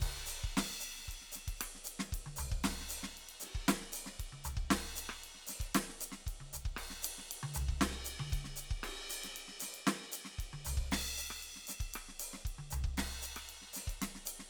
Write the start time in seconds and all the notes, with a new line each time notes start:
0.01 kick, hi-hat pedal, crash
0.26 hi-hat pedal
0.44 kick
0.57 snare, crash
0.80 hi-hat pedal
0.98 snare
1.05 kick, hi-hat pedal
1.11 ride
1.21 snare
1.32 snare, hi-hat pedal, ride
1.48 kick, ride
1.57 hi-hat pedal
1.61 cross-stick, ride
1.75 snare
1.84 hi-hat pedal, ride
1.99 snare
2.12 kick, ride
2.26 high tom
2.36 floor tom, hi-hat pedal
2.52 kick
2.61 kick, snare, crash
2.71 snare
2.81 snare
2.89 hi-hat pedal, ride
3.03 snare
3.09 snare
3.17 ride
3.29 ride
3.40 snare, hi-hat pedal, ride
3.55 kick
3.68 snare, ride
3.81 snare
3.92 hi-hat pedal, ride
4.06 snare
4.19 kick, ride
4.32 high tom
4.44 floor tom, hi-hat pedal
4.57 kick
4.70 snare, crash
4.88 snare
4.96 hi-hat pedal, ride
5.09 cross-stick
5.24 ride
5.35 snare
5.47 snare, hi-hat pedal, ride
5.60 kick, ride
5.75 snare, ride
5.89 snare
6.01 hi-hat pedal, ride
6.12 snare
6.27 kick, ride
6.40 high tom
6.53 floor tom, hi-hat pedal
6.65 kick
6.77 cross-stick, crash
6.90 snare
7.02 hi-hat pedal, ride
7.18 snare
7.31 ride
7.43 high tom
7.54 floor tom, hi-hat pedal
7.69 kick
7.81 snare, ride
7.91 snare
7.96 snare
8.05 hi-hat pedal, ride
8.20 high tom
8.29 kick, hi-hat pedal
8.33 ride
8.44 snare
8.56 hi-hat pedal, ride
8.71 kick
8.83 cross-stick, ride
9.10 hi-hat pedal, ride
9.24 snare, ride
9.36 ride
9.48 snare
9.60 snare, hi-hat pedal, ride
9.74 ride
9.87 snare, ride
10.03 snare
10.12 hi-hat pedal, ride
10.25 snare
10.38 kick, ride
10.53 high tom
10.65 floor tom, hi-hat pedal
10.77 kick
10.92 snare, crash
11.17 hi-hat pedal, ride
11.30 cross-stick
11.43 ride
11.56 snare
11.67 snare, hi-hat pedal, ride
11.80 kick, ride
11.92 cross-stick, hi-hat pedal, ride
12.08 snare
12.19 hi-hat pedal, ride
12.33 snare
12.45 kick, ride
12.58 high tom
12.71 floor tom, hi-hat pedal
12.84 kick
12.97 snare, crash
13.22 hi-hat pedal, ride
13.36 cross-stick, ride
13.49 ride
13.62 snare
13.73 snare, hi-hat pedal, ride
13.87 kick, ride
14.02 snare, ride
14.15 snare
14.26 hi-hat pedal, ride
14.39 snare